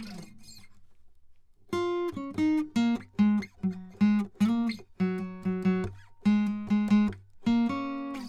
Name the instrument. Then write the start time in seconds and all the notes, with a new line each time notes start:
acoustic guitar
0.00 G#3
0.20 E3
1.74 F4
2.18 C#4
2.39 D#4
2.77 A#3
3.20 G#3
3.65 F#3
4.02 G#3
4.42 A#3
5.01 F#3
5.47 F#3
5.67 F#3
6.27 G#3
6.72 G#3
6.92 G#3
7.48 A#3
7.71 C#4
8.17 G#3